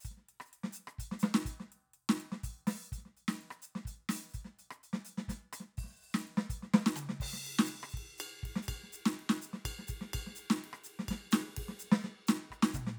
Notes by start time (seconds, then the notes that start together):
0.01 hi-hat pedal
0.05 closed hi-hat, kick
0.11 snare
0.18 snare
0.29 closed hi-hat
0.41 cross-stick
0.46 hi-hat pedal
0.54 closed hi-hat
0.64 snare
0.73 closed hi-hat, hi-hat pedal
0.88 cross-stick
0.99 closed hi-hat, kick
1.12 snare
1.20 snare, hi-hat pedal
1.35 snare
1.46 closed hi-hat, kick
1.52 kick
1.60 snare
1.72 closed hi-hat
1.94 closed hi-hat
2.10 snare
2.21 closed hi-hat
2.32 snare
2.44 open hi-hat, kick
2.50 kick
2.68 open hi-hat, snare
2.86 hi-hat pedal
2.93 closed hi-hat, kick
2.98 kick, snare
3.06 snare
3.17 closed hi-hat
3.29 snare
3.41 closed hi-hat
3.51 cross-stick
3.62 hi-hat pedal
3.76 snare
3.86 closed hi-hat, kick
4.09 open hi-hat, snare
4.30 hi-hat pedal
4.34 closed hi-hat, kick
4.45 snare
4.55 snare
4.59 closed hi-hat
4.71 cross-stick
4.84 closed hi-hat
4.94 snare
5.05 closed hi-hat, hi-hat pedal
5.18 snare
5.29 closed hi-hat, kick, snare
5.53 closed hi-hat, cross-stick
5.61 snare
5.78 open hi-hat, kick
5.84 kick, snare
5.91 snare
6.03 open hi-hat
6.15 snare
6.19 hi-hat pedal
6.28 closed hi-hat
6.38 snare
6.50 closed hi-hat, kick
6.56 kick
6.59 kick, snare
6.74 snare
6.87 snare
6.96 hi-hat pedal, high tom
7.09 snare
7.21 kick, crash
7.34 snare
7.47 ride
7.59 snare
7.66 hi-hat pedal
7.71 ride
7.84 cross-stick
7.90 hi-hat pedal
7.94 kick, ride
8.00 kick
8.03 kick
8.19 hi-hat pedal, ride bell
8.44 kick, ride
8.49 kick
8.52 kick
8.56 snare
8.63 hi-hat pedal
8.69 kick, ride bell
8.75 kick
8.84 snare
8.93 hi-hat pedal, ride
9.06 snare
9.20 ride
9.30 snare
9.42 hi-hat pedal, ride
9.54 snare
9.65 kick, ride bell
9.71 kick
9.79 snare
9.88 kick, hi-hat pedal, ride
10.02 snare
10.14 kick, ride bell
10.24 kick, snare
10.36 hi-hat pedal
10.40 ride
10.51 snare
10.64 ride
10.73 cross-stick
10.84 hi-hat pedal, ride
11.00 snare
11.09 kick, snare, ride bell
11.32 snare, hi-hat pedal, ride
11.57 kick, ride
11.69 snare
11.80 hi-hat pedal
11.84 snare
11.92 snare
12.01 snare, hi-hat pedal
12.28 snare, hi-hat pedal
12.51 kick, cross-stick
12.63 snare
12.74 kick, hi-hat pedal, mid tom
12.87 snare